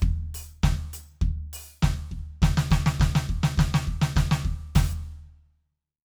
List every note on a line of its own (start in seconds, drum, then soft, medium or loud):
0.01 kick loud
0.01 percussion medium
0.35 percussion loud
0.64 kick loud
0.64 snare loud
0.64 percussion soft
0.94 percussion loud
1.22 kick loud
1.54 percussion loud
1.83 kick loud
1.83 snare loud
2.12 kick medium
2.43 kick loud
2.43 snare loud
2.43 percussion soft
2.58 snare loud
2.71 kick loud
2.71 snare loud
2.71 percussion medium
2.87 snare loud
3.00 kick loud
3.00 snare loud
3.16 snare loud
3.30 kick medium
3.44 snare loud
3.58 kick loud
3.58 snare loud
3.75 snare loud
3.88 kick medium
4.02 snare loud
4.17 kick loud
4.17 snare loud
4.32 snare loud
4.46 kick medium
4.46 snare soft
4.76 kick loud
4.76 snare loud
4.76 percussion loud
4.90 percussion medium